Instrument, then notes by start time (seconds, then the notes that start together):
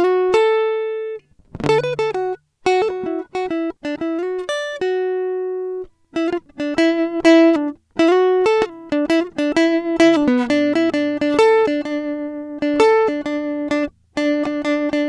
acoustic guitar
0.00 F#4
0.35 A4
1.65 D3
1.71 A4
1.85 B4
2.00 A4
2.16 F#4
2.68 F#4
2.83 A4
2.91 F#4
3.08 E4
3.36 F#4
3.52 E4
3.86 D4
4.03 E4
4.24 F#4
4.50 D5
4.83 F#4
6.18 E4
6.61 D4
6.80 E4
7.26 E4
7.56 D4
8.01 E4
8.10 F#4
8.47 A4
8.63 E4
8.94 D4
9.11 E4
9.40 D4
9.58 E4
10.01 E4
10.17 D4
10.29 B3
10.51 D4
10.77 E4
10.95 D4
11.23 D4
11.40 A4
11.69 D4
11.87 D4
12.64 D4
12.81 A4
13.10 D4
13.27 D4
13.73 D4
14.19 D4
14.45 D4
14.67 D4
14.95 D4